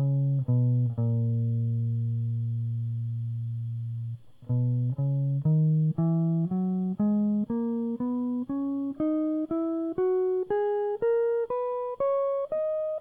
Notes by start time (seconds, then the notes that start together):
0.00 C#3
0.50 B2
1.00 A#2
4.51 B2
5.00 C#3
5.46 D#3
5.99 E3
6.52 F#3
7.00 G#3
7.50 A#3
8.01 B3
8.50 C#4
9.00 D#4
9.51 E4
9.98 F#4
10.51 G#4
11.02 A#4
11.50 B4
12.01 C#5
12.52 D#5